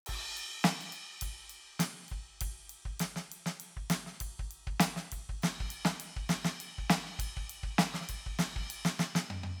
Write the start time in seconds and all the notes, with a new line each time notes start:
0.06 kick, ride
0.23 ride
0.37 ride
0.63 snare, ride
0.81 ride
0.92 ride
1.21 kick, ride
1.50 ride
1.79 snare, ride
2.08 kick, ride
2.41 kick, ride
2.69 ride
2.85 kick
3.00 snare, ride
3.16 snare
3.32 ride
3.46 snare
3.60 ride
3.77 kick
3.90 snare, ride
4.06 snare
4.13 snare
4.20 kick, ride
4.39 kick
4.51 ride
4.67 kick
4.80 snare, ride
4.96 snare
5.12 kick, ride
5.29 kick
5.42 snare, ride
5.60 kick
5.70 ride
5.85 snare
6.00 ride
6.16 kick
6.29 snare, ride
6.45 snare
6.60 ride
6.78 kick
6.90 snare, ride
7.04 snare
7.08 snare
7.12 snare
7.19 kick, ride
7.37 kick
7.50 ride
7.63 kick
7.78 snare, ride
7.94 snare
8.01 snare
8.09 kick, ride
8.26 kick
8.39 snare, ride
8.56 kick
8.70 ride
8.76 kick
8.85 snare
8.99 snare
9.15 snare
9.30 high tom
9.43 high tom